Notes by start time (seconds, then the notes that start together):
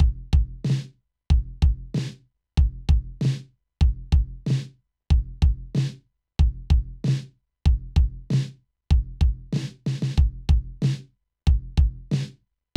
0.01 kick
0.34 kick
0.66 snare
0.71 snare
1.32 kick
1.64 kick
1.96 snare
1.99 snare
2.59 kick
2.90 kick
3.23 snare
3.26 snare
3.82 kick
4.14 kick
4.48 snare
4.52 snare
5.12 kick
5.44 kick
5.76 snare
5.79 snare
6.41 kick
6.72 kick
7.06 snare
7.10 snare
7.67 kick
7.98 kick
8.32 snare
8.35 snare
8.92 kick
9.22 kick
9.54 snare
9.58 snare
9.88 snare
10.04 snare
10.19 kick
10.51 kick
10.84 snare
10.86 snare
11.48 kick
11.79 kick
12.13 snare
12.15 snare